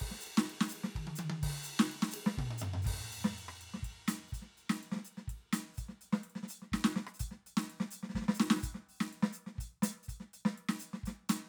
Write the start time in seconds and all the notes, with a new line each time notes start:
0.01 kick, crash
0.08 kick
0.11 kick, snare
0.21 hi-hat pedal
0.27 ride bell
0.38 snare
0.51 ride
0.62 snare
0.69 hi-hat pedal, ride
0.84 snare
0.96 kick, high tom
1.02 kick
1.05 kick, high tom
1.16 hi-hat pedal, high tom
1.31 high tom
1.44 kick, crash
1.50 kick
1.64 hi-hat pedal
1.69 ride
1.80 snare
1.92 ride
2.03 snare
2.12 hi-hat pedal, ride
2.27 snare
2.39 kick, mid tom
2.44 kick
2.47 kick
2.52 mid tom
2.59 floor tom, hi-hat pedal
2.74 floor tom
2.83 kick, hi-hat pedal, floor tom
2.88 crash
2.94 kick
2.98 kick
3.00 kick
3.13 open hi-hat
3.25 snare, hi-hat pedal
3.38 closed hi-hat
3.49 cross-stick
3.56 hi-hat pedal
3.62 closed hi-hat
3.75 snare
3.83 kick, closed hi-hat
3.92 kick
4.09 closed hi-hat, snare
4.29 hi-hat pedal
4.33 closed hi-hat, kick
4.42 snare
4.58 closed hi-hat
4.70 snare
4.84 closed hi-hat
4.93 snare
4.97 snare
5.05 hi-hat pedal
5.18 snare
5.29 kick, closed hi-hat
5.34 kick
5.54 closed hi-hat, snare
5.75 closed hi-hat, hi-hat pedal
5.79 kick
5.87 kick, snare
6.02 closed hi-hat
6.13 snare
6.24 closed hi-hat
6.31 closed hi-hat
6.36 snare
6.44 snare
6.49 closed hi-hat, hi-hat pedal
6.63 snare
6.73 kick, snare
6.85 snare
6.97 snare
7.08 cross-stick
7.15 hi-hat pedal
7.20 closed hi-hat, kick
7.27 kick
7.31 kick, snare
7.47 closed hi-hat
7.58 snare
7.71 closed hi-hat
7.81 snare
7.92 closed hi-hat, hi-hat pedal
8.04 snare
8.10 snare
8.16 kick, snare
8.22 snare
8.29 snare
8.35 hi-hat pedal
8.41 snare
8.51 snare
8.57 snare, hi-hat pedal
8.64 closed hi-hat, kick
8.70 kick
8.74 kick, snare
8.90 open hi-hat
9.01 snare, hi-hat pedal
9.14 closed hi-hat
9.23 snare
9.34 closed hi-hat, hi-hat pedal
9.47 snare
9.56 kick, snare
9.61 closed hi-hat, kick
9.83 open hi-hat, snare
9.97 snare
10.04 hi-hat pedal
10.09 closed hi-hat, kick
10.21 snare
10.34 closed hi-hat
10.46 snare
10.59 closed hi-hat
10.70 snare
10.80 closed hi-hat, hi-hat pedal
10.94 snare
11.04 closed hi-hat, kick, snare
11.30 closed hi-hat, snare